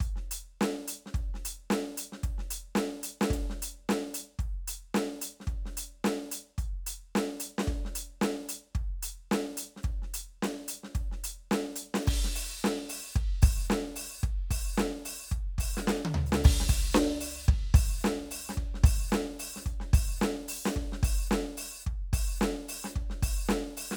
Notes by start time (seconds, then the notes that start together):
0.01 closed hi-hat, kick
0.16 snare
0.32 closed hi-hat
0.62 snare
0.88 closed hi-hat
1.07 snare
1.15 kick, closed hi-hat
1.35 snare
1.46 closed hi-hat
1.71 snare
1.98 closed hi-hat
2.13 snare
2.24 kick, closed hi-hat
2.39 snare
2.51 closed hi-hat
2.76 snare
3.04 closed hi-hat
3.22 snare
3.31 kick, closed hi-hat
3.50 snare
3.63 closed hi-hat
3.90 snare
4.15 closed hi-hat
4.39 kick, closed hi-hat
4.68 closed hi-hat
4.95 snare
5.22 closed hi-hat
5.41 snare
5.48 kick, closed hi-hat
5.66 snare
5.78 closed hi-hat
6.05 snare
6.32 closed hi-hat
6.59 closed hi-hat, kick
6.87 closed hi-hat
7.16 snare
7.41 closed hi-hat
7.59 snare
7.68 kick
7.86 snare
7.96 closed hi-hat
8.22 snare
8.49 closed hi-hat
8.75 kick, closed hi-hat
9.03 closed hi-hat
9.32 snare
9.58 closed hi-hat
9.77 snare
9.84 kick, closed hi-hat
10.03 snare
10.14 closed hi-hat
10.43 snare
10.69 closed hi-hat
10.84 snare
10.95 kick, closed hi-hat
11.12 snare
11.24 closed hi-hat
11.52 snare
11.76 closed hi-hat
11.95 snare
12.02 hi-hat pedal
12.08 kick, crash
12.25 snare
12.36 open hi-hat
12.60 hi-hat pedal
12.65 snare
12.90 open hi-hat
13.13 kick, hi-hat pedal
13.43 open hi-hat, kick
13.66 hi-hat pedal
13.71 snare
13.96 open hi-hat
14.21 kick, hi-hat pedal
14.51 open hi-hat, kick
14.75 snare, hi-hat pedal
15.06 open hi-hat
15.30 kick, hi-hat pedal
15.59 open hi-hat, kick
15.78 snare, hi-hat pedal
15.88 snare
15.97 hi-hat pedal
16.06 high tom
16.15 floor tom
16.27 hi-hat pedal
16.33 snare
16.45 kick, crash
16.61 snare
16.69 open hi-hat, kick
16.93 snare, hi-hat pedal
17.21 open hi-hat
17.45 kick, hi-hat pedal
17.52 snare
17.57 snare
17.61 snare
17.75 open hi-hat, kick
18.02 snare, hi-hat pedal
18.32 open hi-hat
18.50 snare
18.54 kick, hi-hat pedal
18.75 snare
18.84 open hi-hat, kick
19.09 snare, hi-hat pedal
19.40 open hi-hat
19.57 snare
19.62 kick, hi-hat pedal
19.67 closed hi-hat
19.81 snare
19.94 open hi-hat, kick
20.18 snare, hi-hat pedal
20.49 open hi-hat
20.66 snare
20.72 hi-hat pedal
20.77 kick, closed hi-hat
20.93 snare
21.04 open hi-hat, kick
21.27 hi-hat pedal
21.32 snare
21.58 open hi-hat
21.82 hi-hat pedal
21.87 kick
22.14 open hi-hat, kick
22.38 snare, hi-hat pedal
22.69 open hi-hat
22.85 snare
22.91 hi-hat pedal
22.96 kick, closed hi-hat
23.10 snare
23.23 open hi-hat, kick
23.47 snare, hi-hat pedal
23.78 open hi-hat
23.92 snare